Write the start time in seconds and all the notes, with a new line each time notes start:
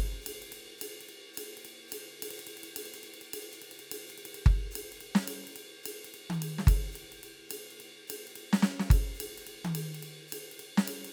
0.22 hi-hat pedal
0.27 ride
0.42 ride
0.78 hi-hat pedal, ride
1.01 ride
1.09 ride
1.34 hi-hat pedal, ride
1.57 ride
1.65 ride
1.88 hi-hat pedal, ride
2.23 ride
2.31 ride
2.36 hi-hat pedal, ride
2.47 ride
2.57 ride
2.64 ride
2.76 ride
2.86 ride
2.94 hi-hat pedal, ride
3.04 ride
3.14 ride
3.22 ride
3.34 ride
3.43 ride
3.52 hi-hat pedal, ride
3.62 ride
3.72 ride
3.80 ride
3.92 ride
4.07 hi-hat pedal, ride
4.18 ride
4.26 ride
4.35 ride
4.46 kick
4.71 hi-hat pedal
4.76 ride
4.92 ride
5.01 ride
5.15 snare
5.21 hi-hat pedal
5.28 ride
5.47 ride
5.56 ride
5.83 hi-hat pedal, ride
6.05 ride
6.14 ride
6.30 hi-hat pedal, high tom
6.42 ride
6.59 snare
6.67 kick, ride
6.92 hi-hat pedal, ride
7.12 ride
7.23 ride
7.50 hi-hat pedal, ride
7.71 ride
7.80 ride
8.08 hi-hat pedal, ride
8.27 ride
8.36 ride
8.53 snare, hi-hat pedal
8.63 snare
8.80 snare
8.91 kick, ride
9.15 hi-hat pedal
9.20 ride
9.38 ride
9.47 ride
9.64 hi-hat pedal, high tom
9.75 ride
9.95 ride
10.03 ride
10.28 hi-hat pedal
10.33 ride
10.52 ride
10.60 ride
10.78 snare, hi-hat pedal
10.88 ride
11.05 ride